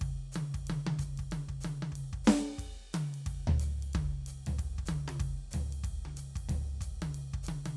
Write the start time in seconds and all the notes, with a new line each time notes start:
0.01 kick, ride
0.31 kick, hi-hat pedal, ride
0.36 high tom
0.54 kick, ride
0.67 high tom, ride
0.87 high tom
0.99 kick, hi-hat pedal, ride
1.18 kick, ride
1.31 high tom, ride
1.49 kick
1.61 hi-hat pedal, high tom, ride
1.82 high tom
1.92 kick, ride
2.13 kick
2.24 snare, hi-hat pedal, crash
2.58 kick, ride
2.93 hi-hat pedal, high tom, ride
3.14 ride
3.26 kick, ride
3.47 floor tom
3.60 hi-hat pedal, ride
3.82 ride
3.93 kick, high tom, ride
4.26 hi-hat pedal, ride
4.46 floor tom, ride
4.58 kick, ride
4.78 kick
4.86 hi-hat pedal, high tom, ride
5.08 high tom, ride
5.20 kick, ride
5.51 floor tom, hi-hat pedal, ride
5.72 ride
5.84 kick, ride
6.05 high tom
6.16 hi-hat pedal, ride
6.35 kick, ride
6.49 floor tom, ride
6.81 kick, hi-hat pedal, ride
7.02 high tom, ride
7.14 ride
7.33 kick
7.43 hi-hat pedal, ride
7.48 kick, high tom
7.66 high tom, ride